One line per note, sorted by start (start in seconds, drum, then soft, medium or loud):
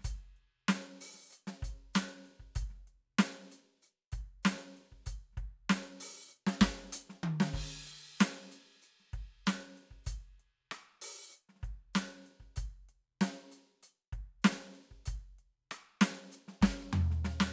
0.01 snare soft
0.01 hi-hat pedal soft
0.05 closed hi-hat medium
0.05 kick soft
0.11 kick soft
0.15 snare soft
0.17 snare soft
0.37 closed hi-hat soft
0.69 closed hi-hat medium
0.69 snare loud
1.02 open hi-hat medium
1.15 snare soft
1.20 snare soft
1.31 closed hi-hat soft
1.31 hi-hat pedal medium
1.48 snare medium
1.63 closed hi-hat medium
1.63 kick soft
1.94 closed hi-hat medium
1.94 snare loud
1.94 hi-hat pedal soft
2.27 closed hi-hat soft
2.40 kick soft
2.56 closed hi-hat medium
2.56 kick medium
2.63 kick soft
2.67 kick soft
2.67 snare soft
2.75 snare soft
2.88 closed hi-hat soft
3.19 closed hi-hat medium
3.19 snare loud
3.52 closed hi-hat soft
3.83 open hi-hat soft
3.83 hi-hat pedal soft
4.13 closed hi-hat soft
4.13 kick soft
4.21 kick soft
4.44 closed hi-hat medium
4.44 snare loud
4.44 hi-hat pedal soft
4.56 snare soft
4.78 closed hi-hat soft
4.93 kick soft
5.00 snare soft
5.03 snare soft
5.06 closed hi-hat medium
5.06 kick soft
5.06 snare soft
5.34 snare soft
5.38 kick soft
5.38 closed hi-hat soft
5.70 closed hi-hat medium
5.70 snare loud
5.83 snare soft
6.01 open hi-hat medium
6.30 hi-hat pedal soft
6.48 snare medium
6.62 kick soft
6.62 snare loud
6.80 snare soft
6.93 closed hi-hat loud
7.10 snare soft
7.24 high tom loud
7.41 snare loud
7.54 kick soft
7.54 crash medium
7.76 snare soft
7.81 snare soft
7.85 closed hi-hat soft
7.85 snare soft
7.88 snare soft
8.21 closed hi-hat medium
8.21 snare loud
8.52 closed hi-hat soft
8.77 snare soft
8.83 open hi-hat soft
9.01 snare soft
9.06 snare soft
9.14 kick soft
9.14 closed hi-hat soft
9.47 open hi-hat medium
9.47 snare loud
9.47 hi-hat pedal medium
9.78 closed hi-hat soft
9.92 kick soft
10.05 closed hi-hat medium
10.05 kick soft
10.05 hi-hat pedal soft
10.13 kick soft
10.40 closed hi-hat soft
10.72 closed hi-hat medium
10.72 cross-stick medium
11.01 open hi-hat loud
11.01 snare soft
11.32 closed hi-hat soft
11.32 hi-hat pedal soft
11.50 snare soft
11.57 snare soft
11.61 kick soft
11.61 snare soft
11.65 snare soft
11.65 closed hi-hat soft
11.94 closed hi-hat medium
11.94 snare medium
11.94 hi-hat pedal soft
12.27 closed hi-hat soft
12.41 kick soft
12.41 snare soft
12.57 closed hi-hat medium
12.57 kick soft
12.90 closed hi-hat soft
13.22 closed hi-hat medium
13.22 snare loud
13.44 snare soft
13.52 closed hi-hat soft
13.84 closed hi-hat soft
14.13 kick soft
14.13 closed hi-hat soft
14.43 closed hi-hat medium
14.43 snare loud
14.43 hi-hat pedal soft
14.53 snare soft
14.76 closed hi-hat soft
14.92 kick soft
15.07 closed hi-hat medium
15.07 kick soft
15.17 kick soft
15.39 closed hi-hat soft
15.72 closed hi-hat medium
15.72 cross-stick medium
16.02 closed hi-hat medium
16.02 snare loud
16.12 snare soft
16.32 hi-hat pedal medium
16.49 snare soft
16.62 kick soft
16.62 snare loud
16.68 kick soft
16.71 kick soft
16.82 snare soft
16.94 floor tom loud
17.12 snare soft
17.25 snare medium
17.41 snare loud